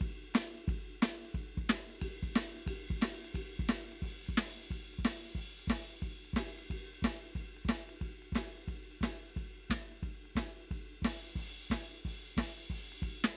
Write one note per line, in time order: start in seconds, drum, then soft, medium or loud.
0.01 kick medium
0.01 ride medium
0.34 snare loud
0.34 hi-hat pedal medium
0.34 ride medium
0.58 ride medium
0.68 kick medium
0.68 ride medium
1.02 snare loud
1.02 hi-hat pedal medium
1.02 ride medium
1.25 ride medium
1.34 kick soft
1.34 hi-hat pedal soft
1.34 ride medium
1.58 kick medium
1.69 snare loud
1.69 ride medium
1.90 ride medium
2.02 kick soft
2.02 ride loud
2.23 kick soft
2.36 snare loud
2.36 ride medium
2.57 ride medium
2.67 kick soft
2.67 ride loud
2.90 kick medium
3.02 snare loud
3.02 ride loud
3.25 ride medium
3.35 kick soft
3.35 ride loud
3.59 kick medium
3.69 snare loud
3.69 ride loud
3.92 ride medium
4.02 kick soft
4.02 ride medium
4.27 kick soft
4.27 ride medium
4.37 snare loud
4.37 ride medium
4.60 ride soft
4.71 kick soft
4.71 ride medium
4.94 ride soft
4.99 kick soft
5.05 snare loud
5.05 ride medium
5.26 ride soft
5.35 kick soft
5.35 ride medium
5.60 ride soft
5.68 kick medium
5.68 snare loud
5.68 ride medium
5.91 ride medium
6.02 kick soft
6.02 ride medium
6.25 ride soft
6.33 kick soft
6.33 snare loud
6.33 ride loud
6.59 ride medium
6.70 kick soft
6.70 ride medium
6.94 ride soft
7.03 kick soft
7.03 snare loud
7.03 ride medium
7.26 ride soft
7.35 kick soft
7.35 ride bell medium
7.57 ride medium
7.65 kick soft
7.65 snare loud
7.65 ride bell medium
7.89 ride medium
8.01 kick soft
8.01 ride medium
8.22 ride medium
8.32 kick soft
8.32 snare loud
8.32 ride loud
8.58 ride medium
8.68 kick soft
8.68 ride medium
8.92 ride soft
9.01 kick soft
9.01 snare medium
9.01 ride medium
9.37 kick soft
9.37 ride medium
9.60 ride soft
9.70 kick soft
9.70 snare loud
9.70 ride medium
9.92 ride soft
10.03 kick soft
10.03 ride medium
10.26 ride soft
10.36 kick soft
10.36 snare loud
10.36 ride medium
10.61 ride soft
10.71 kick soft
10.71 ride medium
10.93 ride soft
11.02 kick soft
11.02 snare loud
11.02 ride medium
11.27 ride soft
11.36 kick soft
11.36 ride medium
11.61 ride soft
11.70 kick soft
11.70 snare loud
11.70 ride medium
11.94 ride soft
12.05 kick soft
12.05 ride medium
12.29 ride soft
12.37 kick soft
12.37 snare loud
12.37 ride medium
12.60 ride soft
12.70 kick soft
12.70 ride medium
12.92 ride medium
13.02 kick medium
13.02 ride medium
13.24 snare loud